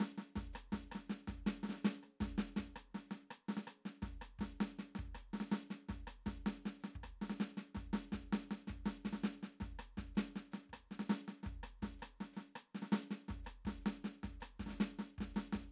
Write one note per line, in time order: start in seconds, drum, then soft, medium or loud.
0.01 snare medium
0.18 snare soft
0.36 kick soft
0.36 snare soft
0.54 cross-stick medium
0.54 hi-hat pedal soft
0.73 kick soft
0.73 snare soft
0.92 cross-stick medium
0.92 snare soft
1.09 snare soft
1.09 hi-hat pedal soft
1.28 kick soft
1.28 snare soft
1.47 snare medium
1.47 hi-hat pedal soft
1.64 snare soft
1.70 snare soft
1.73 snare soft
1.85 snare medium
2.04 cross-stick soft
2.21 kick soft
2.21 snare soft
2.39 snare medium
2.44 hi-hat pedal soft
2.57 kick soft
2.57 snare medium
2.77 cross-stick medium
2.95 snare soft
3.08 snare soft
3.08 hi-hat pedal soft
3.31 cross-stick medium
3.49 snare soft
3.58 snare soft
3.68 cross-stick medium
3.86 snare soft
4.03 kick soft
4.03 snare soft
4.22 cross-stick medium
4.22 hi-hat pedal soft
4.40 kick soft
4.40 snare soft
4.61 snare medium
4.79 snare soft
4.96 kick soft
4.96 snare soft
5.16 cross-stick medium
5.16 hi-hat pedal soft
5.34 snare soft
5.41 snare soft
5.52 snare medium
5.71 snare soft
5.89 kick soft
5.89 snare soft
6.08 cross-stick medium
6.08 hi-hat pedal soft
6.27 kick soft
6.27 snare soft
6.47 snare medium
6.66 snare soft
6.81 hi-hat pedal soft
6.85 snare soft
6.96 kick soft
7.04 cross-stick medium
7.22 snare soft
7.30 snare soft
7.41 snare medium
7.58 snare soft
7.75 kick soft
7.75 snare soft
7.94 snare medium
7.94 hi-hat pedal soft
8.13 kick soft
8.13 snare soft
8.33 snare medium
8.51 snare soft
8.51 hi-hat pedal soft
8.68 kick soft
8.68 snare soft
8.85 snare medium
8.85 hi-hat pedal soft
9.06 kick soft
9.06 snare soft
9.13 snare soft
9.24 snare medium
9.44 snare soft
9.61 kick soft
9.61 snare soft
9.80 cross-stick medium
9.80 hi-hat pedal soft
9.98 kick soft
9.98 snare soft
10.16 snare medium
10.16 hi-hat pedal soft
10.36 snare soft
10.52 snare soft
10.52 hi-hat pedal soft
10.70 kick soft
10.70 cross-stick medium
10.92 snare soft
10.92 hi-hat pedal soft
11.00 snare soft
11.10 snare medium
11.29 snare soft
11.44 kick soft
11.44 snare soft
11.64 cross-stick medium
11.64 hi-hat pedal soft
11.83 kick soft
11.83 snare soft
11.99 cross-stick medium
11.99 hi-hat pedal soft
12.21 snare soft
12.34 snare soft
12.34 hi-hat pedal soft
12.56 cross-stick medium
12.75 snare soft
12.83 snare soft
12.93 snare medium
13.10 snare soft
13.10 hi-hat pedal soft
13.29 kick soft
13.29 snare soft
13.45 cross-stick medium
13.45 hi-hat pedal soft
13.66 kick soft
13.66 snare soft
13.81 hi-hat pedal soft
13.87 snare medium
14.04 snare soft
14.04 hi-hat pedal soft
14.24 kick soft
14.24 snare soft
14.41 cross-stick medium
14.41 hi-hat pedal soft
14.60 kick soft
14.60 snare soft
14.67 snare soft
14.69 snare soft
14.71 snare soft
14.81 snare medium
14.99 snare soft
14.99 hi-hat pedal soft
15.19 kick soft
15.19 snare soft
15.34 snare medium
15.34 hi-hat pedal soft
15.53 kick soft
15.53 snare medium